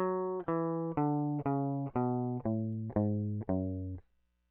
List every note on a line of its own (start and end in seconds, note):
0.00 0.44 F#3
0.49 0.95 E3
1.01 1.44 D3
1.47 1.91 C#3
1.97 2.43 B2
2.48 2.94 A2
2.98 3.46 G#2
3.52 4.00 F#2